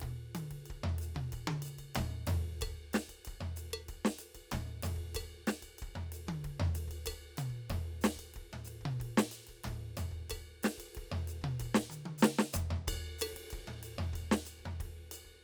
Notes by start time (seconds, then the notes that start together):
0.01 kick, mid tom, ride
0.35 hi-hat pedal, high tom, ride
0.51 kick, ride
0.66 ride bell
0.70 kick
0.84 floor tom
0.99 hi-hat pedal, ride
1.15 kick, mid tom
1.33 kick, ride bell
1.48 high tom
1.54 high tom
1.63 hi-hat pedal, ride bell
1.79 kick, ride bell
1.95 kick, ride bell, floor tom
2.27 floor tom, hi-hat pedal, ride
2.62 kick, ride bell, percussion
2.94 snare, hi-hat pedal, ride bell
3.09 kick, ride bell
3.26 kick, ride bell
3.41 floor tom
3.57 hi-hat pedal, ride
3.71 kick, percussion
3.89 kick, ride bell
4.05 snare
4.19 hi-hat pedal, ride
4.35 kick, ride bell
4.52 kick, ride bell, floor tom
4.83 floor tom, hi-hat pedal, ride
4.97 kick
5.15 kick, ride bell, percussion
5.48 snare, hi-hat pedal, ride bell
5.63 kick, ride bell
5.79 kick, ride bell
5.96 floor tom
6.13 hi-hat pedal, ride
6.27 kick, high tom
6.45 kick, ride
6.60 floor tom
6.75 hi-hat pedal, ride
6.88 kick, ride bell
7.07 kick, ride bell, percussion
7.38 hi-hat pedal, mid tom, ride bell
7.50 kick
7.70 kick, floor tom, ride
8.02 snare, hi-hat pedal, ride bell
8.17 kick, ride bell
8.35 kick, ride
8.53 floor tom
8.65 hi-hat pedal, ride
8.81 kick
8.86 mid tom
9.00 kick, ride
9.18 snare
9.32 hi-hat pedal, ride bell
9.47 kick, ride
9.64 kick, ride, floor tom
9.98 floor tom, hi-hat pedal, ride bell
10.12 kick
10.30 kick, ride bell, percussion
10.63 snare, hi-hat pedal, ride
10.78 kick, ride bell
10.96 kick, ride
11.12 floor tom
11.28 hi-hat pedal, ride
11.42 kick, mid tom
11.60 kick, ride bell
11.75 snare
11.90 hi-hat pedal, high tom
12.06 high tom
12.19 kick, hi-hat pedal
12.23 snare
12.39 snare
12.54 kick, floor tom, hi-hat pedal
12.71 floor tom
12.88 kick, ride bell
13.10 kick
13.19 hi-hat pedal, ride, percussion
13.33 kick, ride
13.51 kick, ride bell
13.68 floor tom
13.84 hi-hat pedal, ride
13.95 kick, floor tom
14.14 kick, ride bell
14.32 snare
14.46 hi-hat pedal, ride bell
14.60 kick
14.66 floor tom
14.81 kick, ride
15.12 hi-hat pedal, ride bell
15.25 kick